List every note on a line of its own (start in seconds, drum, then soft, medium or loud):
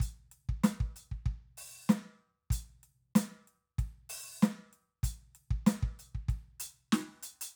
0.01 closed hi-hat medium
0.01 kick medium
0.33 closed hi-hat soft
0.50 kick medium
0.65 closed hi-hat loud
0.65 snare loud
0.81 kick medium
0.97 closed hi-hat medium
1.12 kick soft
1.27 kick medium
1.58 open hi-hat loud
1.90 snare loud
1.90 hi-hat pedal medium
2.51 closed hi-hat loud
2.51 kick medium
2.84 closed hi-hat soft
3.16 closed hi-hat loud
3.16 snare loud
3.48 closed hi-hat soft
3.79 kick medium
3.79 closed hi-hat soft
4.10 open hi-hat loud
4.43 snare loud
4.43 hi-hat pedal medium
4.74 closed hi-hat soft
5.04 closed hi-hat loud
5.04 kick medium
5.36 closed hi-hat soft
5.52 kick medium
5.68 closed hi-hat loud
5.68 snare loud
5.84 kick medium
6.00 closed hi-hat medium
6.16 kick soft
6.29 kick medium
6.29 closed hi-hat soft
6.61 open hi-hat loud
6.93 snare loud
6.93 hi-hat pedal medium
7.24 closed hi-hat loud
7.42 closed hi-hat loud